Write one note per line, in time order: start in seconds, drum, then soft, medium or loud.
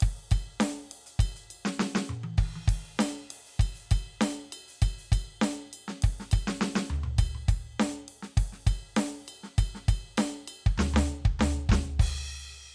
0.01 kick loud
0.01 ride loud
0.32 kick loud
0.32 ride bell loud
0.60 snare loud
0.60 ride loud
0.92 ride loud
1.07 closed hi-hat medium
1.20 kick loud
1.20 ride bell loud
1.36 closed hi-hat medium
1.51 ride bell medium
1.66 snare loud
1.80 snare loud
1.95 snare loud
2.10 mid tom loud
2.24 high tom medium
2.38 kick loud
2.38 crash medium
2.56 high tom medium
2.68 kick loud
2.68 ride loud
3.00 snare loud
3.00 ride bell loud
3.31 ride loud
3.45 open hi-hat medium
3.60 kick loud
3.60 ride bell loud
3.75 open hi-hat medium
3.91 kick loud
3.91 ride bell loud
4.21 snare loud
4.21 ride bell loud
4.53 ride bell loud
4.68 open hi-hat medium
4.82 kick loud
4.82 ride bell loud
4.98 open hi-hat medium
5.12 kick loud
5.12 ride bell loud
5.42 snare loud
5.42 ride bell loud
5.73 ride bell medium
5.88 snare medium
6.03 kick loud
6.03 ride loud
6.20 snare medium
6.32 kick loud
6.32 ride bell loud
6.48 snare loud
6.61 snare loud
6.76 snare loud
6.90 floor tom loud
7.04 mid tom loud
7.19 kick loud
7.19 ride bell loud
7.35 mid tom medium
7.49 kick loud
7.49 ride bell medium
7.80 snare loud
8.09 ride loud
8.23 snare medium
8.38 kick loud
8.38 ride loud
8.53 snare soft
8.67 kick loud
8.67 ride bell loud
8.97 snare loud
8.97 ride loud
9.28 ride bell loud
9.44 snare medium
9.59 kick loud
9.59 ride bell loud
9.75 snare medium
9.89 kick loud
9.89 ride bell loud
10.18 snare loud
10.18 ride bell loud
10.48 ride bell loud
10.67 kick loud
10.78 snare loud
10.78 floor tom loud
10.94 snare loud
10.94 floor tom loud
11.26 kick loud
11.40 snare loud
11.40 floor tom loud
11.70 kick loud
11.70 snare loud
11.70 floor tom loud
12.00 open hi-hat medium
12.00 kick loud
12.00 crash loud